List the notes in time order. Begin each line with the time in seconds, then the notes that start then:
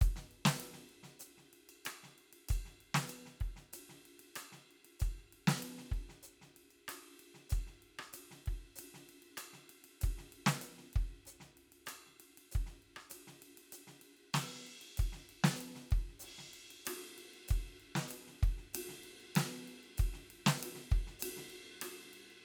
0.01 kick, hi-hat pedal, ride
0.16 snare
0.31 ride
0.45 snare
0.55 hi-hat pedal
0.60 ride
0.73 snare
0.89 ride
1.03 snare
1.19 hi-hat pedal, ride
1.38 snare
1.53 ride
1.69 ride bell
1.85 cross-stick, hi-hat pedal, ride bell
2.03 snare
2.18 ride
2.33 ride
2.49 kick, hi-hat pedal, ride bell
2.65 snare
2.80 ride
2.94 snare
3.07 hi-hat pedal, ride bell
3.26 snare
3.40 kick, ride
3.56 snare
3.73 hi-hat pedal, ride
3.89 snare
4.05 ride
4.19 ride
4.36 cross-stick, hi-hat pedal, ride bell
4.52 snare
4.71 ride
4.85 ride
4.99 kick, hi-hat pedal, ride bell
5.18 snare
5.33 ride
5.47 snare
5.57 hi-hat pedal
5.62 ride
5.78 snare
5.92 kick, ride
6.09 snare
6.23 floor tom, hi-hat pedal, ride
6.41 snare
6.56 ride
6.71 ride bell
6.88 cross-stick, hi-hat pedal, ride
7.19 ride
7.34 snare
7.49 kick, hi-hat pedal, ride bell
7.67 snare
7.82 ride
7.99 cross-stick
8.13 hi-hat pedal, ride
8.31 snare
8.46 kick, ride
8.76 hi-hat pedal, ride
8.94 snare
9.09 ride
9.22 ride
9.37 cross-stick, hi-hat pedal, ride bell
9.53 snare
9.69 ride
9.84 ride
10.01 kick, hi-hat pedal, ride
10.18 snare
10.32 ride
10.46 snare
10.61 hi-hat pedal, ride
10.78 snare
10.93 kick, ride
11.25 hi-hat pedal, ride, floor tom
11.40 snare
11.57 ride
11.72 ride
11.86 cross-stick, hi-hat pedal, ride bell
12.07 snare
12.20 ride
12.38 ride
12.51 kick, hi-hat pedal, ride
12.66 snare
12.82 ride
12.96 cross-stick
13.10 hi-hat pedal, ride
13.27 snare
13.42 ride
13.57 ride
13.72 hi-hat pedal, ride
13.87 snare
14.01 ride
14.17 ride
14.34 snare, hi-hat pedal, ride
14.54 snare
14.67 ride
14.81 ride
14.97 kick, hi-hat pedal, ride
15.12 snare
15.29 ride
15.44 snare
15.56 hi-hat pedal
15.61 ride
15.75 snare
15.91 kick, ride
16.09 snare
16.20 hi-hat pedal, ride
16.38 snare
16.53 ride
16.71 ride
16.85 cross-stick, hi-hat pedal, ride
17.18 ride
17.34 ride
17.48 kick, hi-hat pedal, ride
17.67 snare
17.80 ride
17.95 snare
18.08 hi-hat pedal, ride
18.27 snare
18.43 kick, ride
18.58 snare
18.74 hi-hat pedal, ride
18.89 snare
19.04 ride
19.20 ride
19.35 snare, hi-hat pedal, ride
19.55 snare
19.68 ride
19.83 ride
19.97 kick, hi-hat pedal, ride
20.13 snare
20.30 ride
20.46 snare
20.58 hi-hat pedal
20.63 ride
20.75 snare
20.91 kick, ride
21.07 snare
21.19 hi-hat pedal, ride
21.37 snare
21.50 ride
21.66 ride
21.82 cross-stick, hi-hat pedal, ride
22.01 snare
22.13 ride
22.30 ride